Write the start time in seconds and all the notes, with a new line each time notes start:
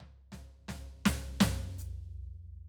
0.00 floor tom
0.32 snare, floor tom
0.68 snare, floor tom
1.05 snare, floor tom
1.40 snare, floor tom
1.78 hi-hat pedal